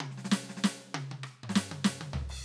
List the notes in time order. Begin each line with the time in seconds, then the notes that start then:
0.00 high tom
0.11 snare
0.17 snare
0.24 snare
0.32 snare
0.43 snare
0.49 snare
0.57 snare
0.64 snare
0.94 high tom
1.11 high tom
1.23 cross-stick
1.43 mid tom
1.49 snare
1.55 snare
1.71 high tom
1.84 snare
2.01 high tom
2.13 floor tom
2.29 crash
2.35 hi-hat pedal